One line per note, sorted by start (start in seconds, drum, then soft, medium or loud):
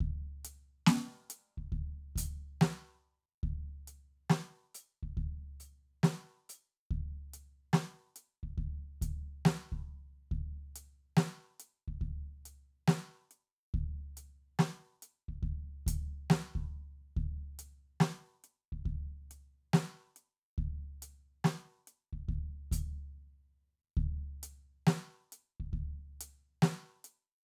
0.01 kick medium
0.45 closed hi-hat medium
0.87 snare loud
1.31 closed hi-hat medium
1.58 kick soft
1.73 kick medium
2.16 closed hi-hat loud
2.16 kick medium
2.62 snare loud
3.44 kick medium
3.44 ride soft
3.88 closed hi-hat medium
4.30 snare loud
4.75 closed hi-hat medium
5.03 kick soft
5.18 kick medium
5.61 closed hi-hat soft
6.04 snare loud
6.50 closed hi-hat medium
6.91 kick medium
7.34 closed hi-hat medium
7.74 snare loud
8.16 closed hi-hat medium
8.44 kick soft
8.58 kick medium
9.02 kick medium
9.02 closed hi-hat medium
9.46 snare loud
9.73 kick medium
10.32 kick medium
10.32 ride soft
10.76 closed hi-hat medium
11.17 snare loud
11.60 closed hi-hat medium
11.88 kick medium
12.02 kick medium
12.02 crash soft
12.46 closed hi-hat medium
12.88 snare loud
13.31 closed hi-hat soft
13.74 kick medium
13.74 ride soft
14.18 closed hi-hat medium
14.59 snare loud
15.03 closed hi-hat medium
15.29 kick soft
15.43 kick medium
15.87 kick medium
15.87 closed hi-hat medium
16.31 snare loud
16.56 kick medium
17.17 kick medium
17.17 snare soft
17.17 crash soft
17.59 closed hi-hat medium
18.01 snare loud
18.44 closed hi-hat soft
18.73 kick soft
18.86 kick medium
18.86 crash soft
19.31 closed hi-hat soft
19.74 snare loud
20.17 closed hi-hat soft
20.58 kick medium
21.03 closed hi-hat medium
21.45 snare loud
21.88 closed hi-hat soft
22.13 kick soft
22.29 kick medium
22.72 closed hi-hat medium
22.72 kick medium
23.97 kick medium
24.44 closed hi-hat medium
24.87 snare loud
25.33 closed hi-hat medium
25.60 kick soft
25.74 kick medium
26.21 closed hi-hat medium
26.63 snare loud
27.05 closed hi-hat medium